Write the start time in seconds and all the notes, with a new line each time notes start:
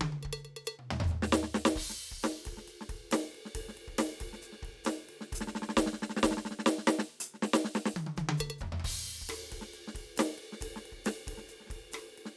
0.01 kick, high tom
0.13 high tom
0.23 kick, percussion
0.37 hi-hat pedal
0.45 percussion
0.57 percussion
0.65 hi-hat pedal, percussion
0.79 mid tom
0.91 floor tom
1.00 kick, floor tom
1.07 hi-hat pedal
1.11 floor tom
1.23 snare
1.28 hi-hat pedal
1.33 snare
1.43 snare
1.52 snare, hi-hat pedal
1.66 snare
1.76 kick, hi-hat pedal, crash
1.83 kick
1.88 kick, snare
2.12 kick
2.17 kick
2.24 snare, hi-hat pedal, ride
2.46 kick, ride
2.54 kick, snare
2.67 hi-hat pedal, ride
2.81 snare
2.89 kick, ride
2.96 kick
3.11 snare, hi-hat pedal, ride
3.35 ride
3.46 snare
3.55 kick, hi-hat pedal, ride
3.62 kick
3.66 kick, snare
3.77 ride
3.88 kick
3.93 kick
3.99 snare, hi-hat pedal, ride
4.21 kick, ride
4.28 kick
4.33 snare
4.42 hi-hat pedal, ride
4.53 snare
4.63 kick, ride
4.69 kick
4.84 snare, hi-hat pedal, ride
5.09 ride
5.21 snare
5.33 kick, hi-hat pedal, ride
5.40 kick, snare
5.48 snare
5.55 snare
5.62 snare
5.69 snare
5.77 kick, snare
5.87 snare
5.93 snare
6.03 snare
6.10 snare
6.17 snare
6.23 kick, snare
6.31 snare
6.37 snare
6.45 snare
6.51 snare
6.59 snare
6.66 snare
6.79 snare
6.88 snare
6.99 snare
7.10 cross-stick
7.20 closed hi-hat
7.34 snare
7.43 snare
7.48 hi-hat pedal
7.54 snare
7.65 snare
7.74 snare, hi-hat pedal
7.86 snare
7.94 kick, hi-hat pedal, high tom
8.07 high tom
8.17 kick, hi-hat pedal, high tom
8.23 kick
8.29 high tom
8.38 kick, hi-hat pedal, percussion
8.46 kick
8.50 percussion
8.59 kick, floor tom, hi-hat pedal
8.73 floor tom
8.80 floor tom
8.85 kick, hi-hat pedal, crash
8.98 kick
9.22 kick
9.29 cross-stick, hi-hat pedal, ride
9.52 kick, ride
9.58 kick, snare
9.73 hi-hat pedal, ride
9.88 snare
9.95 kick, ride
10.01 kick
10.16 snare, hi-hat pedal, ride
10.38 ride
10.53 snare
10.61 kick, hi-hat pedal, ride
10.68 kick
10.76 snare
10.86 ride
10.92 kick
10.97 kick
11.05 snare, hi-hat pedal, ride
11.27 kick, ride
11.34 kick, snare
11.49 hi-hat pedal, ride
11.60 snare
11.67 kick, snare
11.72 ride
11.76 kick
11.92 cross-stick, hi-hat pedal, ride
12.18 ride
12.26 snare